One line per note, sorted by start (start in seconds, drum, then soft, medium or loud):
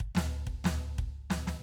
0.00 kick soft
0.15 snare loud
0.15 floor tom loud
0.47 kick soft
0.64 snare loud
0.64 floor tom loud
0.98 kick medium
1.30 snare medium
1.30 floor tom loud
1.47 snare medium
1.47 floor tom medium